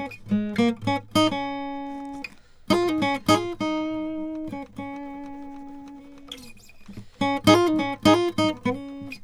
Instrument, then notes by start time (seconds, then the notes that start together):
acoustic guitar
0.00 C#4
0.33 G#3
0.60 A#3
0.89 C#4
1.17 D#4
1.33 C#4
2.71 F4 G#4
2.89 D#4 G#4
3.03 C#4
3.30 F4 G#4
3.62 D#4
4.54 C#4
4.78 C#4
7.22 C#4
7.48 E4 G#4
7.64 E4
7.69 G#4
7.73 D#4
7.80 C#4
8.07 D#4 G#4
8.16 F4
8.39 D#4
8.67 C#4